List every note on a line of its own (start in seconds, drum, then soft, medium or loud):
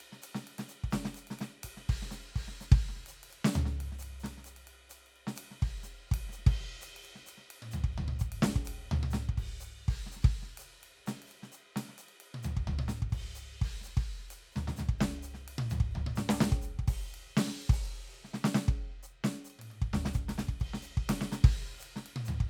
0.01 ride medium
0.12 snare soft
0.22 hi-hat pedal medium
0.22 ride medium
0.35 snare medium
0.48 ride medium
0.59 snare medium
0.59 ride medium
0.69 hi-hat pedal medium
0.69 ride soft
0.84 kick medium
0.91 snare medium
0.91 hi-hat pedal soft
0.91 ride medium
1.05 snare medium
1.15 hi-hat pedal medium
1.15 ride medium
1.28 snare medium
1.28 ride medium
1.38 snare medium
1.38 hi-hat pedal soft
1.38 ride medium
1.63 kick soft
1.63 hi-hat pedal medium
1.63 ride loud
1.77 snare soft
1.89 kick medium
1.89 crash medium
2.02 snare soft
2.11 snare soft
2.11 hi-hat pedal medium
2.36 kick medium
2.36 crash medium
2.48 snare soft
2.61 snare soft
2.61 hi-hat pedal medium
2.70 kick loud
2.70 snare soft
2.70 crash medium
2.89 snare soft
2.96 snare soft
3.07 hi-hat pedal medium
3.07 ride medium
3.24 ride medium
3.30 hi-hat pedal soft
3.30 ride medium
3.45 snare loud
3.54 floor tom loud
3.54 hi-hat pedal medium
3.66 snare soft
3.81 ride medium
3.92 snare soft
3.99 hi-hat pedal medium
4.03 ride medium
4.20 snare medium
4.20 hi-hat pedal soft
4.27 ride medium
4.38 snare soft
4.45 hi-hat pedal medium
4.45 ride medium
4.57 ride medium
4.66 hi-hat pedal soft
4.66 ride medium
4.90 hi-hat pedal medium
4.90 ride medium
5.07 ride soft
5.11 hi-hat pedal soft
5.16 ride soft
5.27 snare medium
5.36 hi-hat pedal medium
5.36 ride loud
5.51 snare soft
5.62 kick medium
5.62 crash medium
5.83 snare soft
5.83 hi-hat pedal medium
6.12 kick medium
6.12 ride loud
6.29 snare soft
6.29 hi-hat pedal medium
6.39 snare soft
6.47 kick loud
6.47 ride medium
6.82 hi-hat pedal medium
6.82 ride medium
6.97 ride medium
7.03 hi-hat pedal soft
7.03 ride soft
7.15 snare soft
7.27 hi-hat pedal medium
7.27 ride medium
7.38 snare soft
7.51 ride medium
7.63 high tom medium
7.72 floor tom medium
7.72 hi-hat pedal medium
7.84 kick medium
7.93 hi-hat pedal soft
7.98 floor tom medium
8.08 high tom medium
8.19 kick medium
8.19 hi-hat pedal medium
8.32 ride medium
8.43 snare loud
8.56 kick medium
8.65 hi-hat pedal medium
8.65 ride medium
8.81 high tom soft
8.92 floor tom loud
9.03 high tom medium
9.11 snare medium
9.11 hi-hat pedal medium
9.29 kick medium
9.38 kick medium
9.38 crash medium
9.38 ride soft
9.61 hi-hat pedal medium
9.65 ride soft
9.89 kick medium
9.89 crash medium
10.06 snare soft
10.12 hi-hat pedal medium
10.16 snare soft
10.23 kick loud
10.23 crash medium
10.33 hi-hat pedal soft
10.42 snare soft
10.58 hi-hat pedal medium
10.58 ride medium
10.81 hi-hat pedal soft
10.81 ride medium
11.07 snare medium
11.07 hi-hat pedal medium
11.07 ride soft
11.22 ride medium
11.28 hi-hat pedal soft
11.32 ride medium
11.43 snare soft
11.52 hi-hat pedal medium
11.52 ride soft
11.76 snare medium
11.76 ride medium
11.89 snare soft
11.98 hi-hat pedal medium
11.98 ride medium
12.09 ride soft
12.21 ride medium
12.35 high tom medium
12.43 floor tom medium
12.43 hi-hat pedal medium
12.57 kick medium
12.68 floor tom loud
12.79 high tom medium
12.89 snare medium
12.89 hi-hat pedal medium
13.02 kick medium
13.10 kick medium
13.10 hi-hat pedal soft
13.14 crash medium
13.14 ride medium
13.35 hi-hat pedal medium
13.40 ride bell soft
13.62 kick medium
13.62 crash medium
13.81 snare soft
13.81 hi-hat pedal medium
13.87 snare soft
13.97 kick medium
13.97 crash medium
14.20 snare soft
14.31 hi-hat pedal medium
14.31 ride medium
14.52 snare medium
14.52 hi-hat pedal soft
14.56 floor tom medium
14.68 snare medium
14.68 floor tom medium
14.77 snare soft
14.77 floor tom medium
14.77 hi-hat pedal medium
14.89 kick medium
14.99 snare loud
14.99 hi-hat pedal soft
14.99 ride soft
15.23 hi-hat pedal medium
15.23 ride medium
15.34 snare soft
15.48 ride medium
15.59 high tom loud
15.70 floor tom medium
15.70 hi-hat pedal medium
15.81 kick medium
15.92 hi-hat pedal soft
15.96 floor tom medium
16.07 high tom medium
16.16 snare medium
16.16 hi-hat pedal medium
16.29 snare loud
16.41 snare loud
16.52 kick medium
16.62 hi-hat pedal medium
16.62 ride soft
16.79 kick medium
16.88 open hi-hat medium
16.88 kick medium
16.88 ride medium
17.15 ride medium
17.37 snare loud
17.37 crash medium
17.48 snare soft
17.62 ride soft
17.70 open hi-hat medium
17.70 kick loud
17.86 ride soft
18.08 ride soft
18.24 snare soft
18.34 snare medium
18.45 snare loud
18.50 hi-hat pedal soft
18.55 snare loud
18.69 kick medium
19.03 hi-hat pedal medium
19.24 snare loud
19.24 ride medium
19.45 hi-hat pedal medium
19.50 ride bell soft
19.59 high tom medium
19.59 ride medium
19.71 high tom soft
19.71 ride soft
19.82 kick medium
19.94 snare medium
19.94 floor tom medium
20.05 snare medium
20.14 kick medium
20.14 hi-hat pedal medium
20.29 snare medium
20.29 ride medium
20.38 snare medium
20.49 kick medium
20.58 kick medium
20.58 hi-hat pedal soft
20.58 ride medium
20.74 snare medium
20.83 hi-hat pedal medium
20.83 ride soft
20.98 kick medium
21.09 snare loud
21.09 ride loud
21.21 snare medium
21.32 snare medium
21.32 hi-hat pedal medium
21.44 kick loud
21.44 crash medium
21.80 hi-hat pedal medium
21.80 ride medium
21.96 snare medium
22.01 hi-hat pedal soft
22.06 ride medium
22.17 high tom loud
22.26 floor tom medium
22.26 hi-hat pedal medium
22.41 kick medium